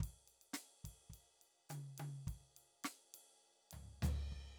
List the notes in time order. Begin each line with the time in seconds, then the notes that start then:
0.00 kick, ride
0.28 ride
0.41 ride
0.53 snare, hi-hat pedal, ride
0.84 kick, ride
1.10 kick, ride
1.41 ride
1.69 hi-hat pedal, high tom, ride
1.98 high tom, ride
2.27 kick, ride
2.56 ride
2.84 snare, hi-hat pedal, ride
3.14 ride
3.71 floor tom, ride
4.02 floor tom, hi-hat pedal, ride
4.32 kick